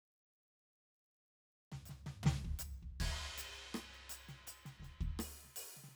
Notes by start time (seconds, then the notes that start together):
1.72 snare, floor tom
1.86 snare, percussion
1.91 floor tom
2.06 snare, floor tom
2.23 snare, floor tom
2.45 kick
2.59 percussion
2.83 kick
3.00 kick, crash, ride
3.38 percussion
3.55 percussion
3.74 cross-stick, percussion
3.77 cross-stick
3.94 percussion
4.10 percussion
4.12 percussion
4.29 snare, percussion
4.47 percussion
4.65 snare, percussion
4.80 kick, snare
4.85 percussion
5.01 kick, percussion
5.19 cross-stick, percussion
5.44 snare
5.46 snare
5.56 percussion
5.77 snare
5.84 snare
5.88 snare